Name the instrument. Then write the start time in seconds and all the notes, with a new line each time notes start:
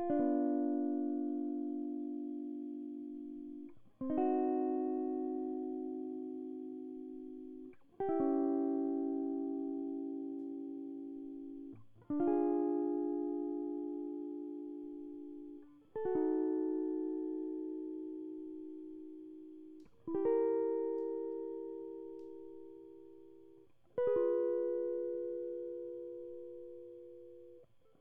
electric guitar
0.00 F4
0.11 D4
0.20 B3
4.02 C4
4.11 D#4
4.18 F#4
8.01 G4
8.09 E4
8.21 C#4
12.11 D4
12.21 F4
12.28 G#4
15.01 F4
15.96 A4
16.06 F#4
16.16 D#4
20.08 E4
20.15 G4
20.26 A#4
23.98 B4
24.08 G#4
24.17 F4